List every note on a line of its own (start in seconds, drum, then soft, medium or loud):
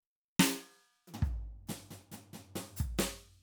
0.39 open hi-hat loud
0.39 snare loud
1.07 high tom medium
1.14 floor tom medium
1.22 kick medium
1.22 hi-hat pedal soft
1.67 snare medium
1.67 floor tom medium
1.67 hi-hat pedal soft
1.90 snare soft
1.90 floor tom medium
2.12 snare soft
2.12 floor tom medium
2.12 hi-hat pedal medium
2.33 snare soft
2.33 floor tom medium
2.55 snare medium
2.55 floor tom medium
2.76 closed hi-hat medium
2.76 kick medium
2.98 snare loud
2.98 hi-hat pedal medium